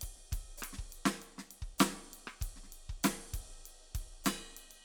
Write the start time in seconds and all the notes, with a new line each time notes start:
0.01 kick, snare, hi-hat pedal, ride
0.13 kick, snare
0.19 snare
0.31 kick, snare, ride
0.40 kick
0.58 hi-hat pedal
0.62 cross-stick, ride
0.73 snare
0.78 kick
0.89 hi-hat pedal, ride
1.05 snare
1.20 hi-hat pedal, ride
1.38 snare
1.51 ride
1.62 kick
1.78 snare, hi-hat pedal, ride
1.91 snare
2.13 ride
2.27 cross-stick
2.40 kick, hi-hat pedal, ride
2.48 kick
2.56 snare
2.63 snare
2.68 snare
2.72 ride
2.89 kick
3.03 snare, hi-hat pedal, ride
3.33 kick, ride
3.40 kick
3.66 ride
3.95 kick, ride
4.01 kick
4.24 snare, hi-hat pedal, ride bell
4.51 snare
4.57 snare, ride
4.62 snare
4.71 ride